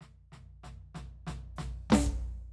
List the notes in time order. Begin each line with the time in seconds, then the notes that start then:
0.01 snare, floor tom
0.32 snare, floor tom
0.63 snare, floor tom
0.95 snare, floor tom
1.27 snare, floor tom
1.56 snare, floor tom, hi-hat pedal
1.90 snare, floor tom
2.06 kick